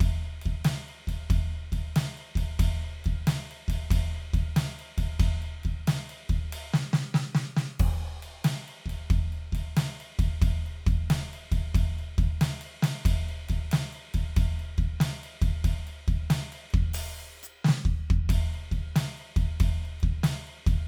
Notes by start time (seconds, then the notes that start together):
0.01 kick, ride
0.42 kick, ride
0.65 snare, ride
0.89 ride
1.08 kick, ride
1.31 kick, ride
1.73 kick, ride
1.96 snare, ride
2.18 ride
2.36 kick, ride
2.60 kick, ride
3.05 kick, ride
3.28 snare, ride
3.51 ride
3.69 kick, ride
3.91 kick, ride
4.15 ride
4.34 kick, ride
4.57 snare, ride
4.80 ride
4.98 kick, ride
5.20 kick, ride bell
5.43 ride
5.64 kick, ride
5.88 snare, ride
6.10 ride
6.30 kick, ride
6.53 ride
6.74 snare
6.94 snare
7.15 snare
7.35 snare
7.57 snare
7.80 kick, crash
8.23 ride
8.45 snare, ride
8.68 ride
8.86 kick, ride
9.11 kick, ride
9.33 ride
9.53 kick, ride
9.77 snare, ride
10.01 ride
10.19 kick, ride
10.42 kick, ride
10.67 ride
10.87 kick, ride
11.11 snare, ride
11.34 ride
11.52 kick, ride
11.75 kick, ride
11.99 ride
12.19 kick, ride
12.42 snare, ride
12.62 ride
12.83 snare, ride
13.06 kick, ride
13.29 ride
13.49 kick, ride
13.72 snare, ride
13.93 ride
14.15 kick, ride
14.37 kick, ride
14.60 ride
14.78 kick, ride
15.01 snare, ride
15.24 ride
15.42 kick, ride
15.65 kick, ride
15.88 ride
16.08 kick, ride
16.31 snare, ride
16.53 ride
16.71 kick, ride
16.94 ride, percussion
17.44 percussion
17.65 snare
17.69 snare
17.86 kick
18.11 kick
18.30 kick, ride
18.54 ride
18.72 kick, ride
18.96 snare, ride
19.18 ride
19.37 kick, ride
19.61 kick, ride
19.86 ride
20.01 kick, ride
20.24 snare, ride
20.48 ride
20.67 kick, ride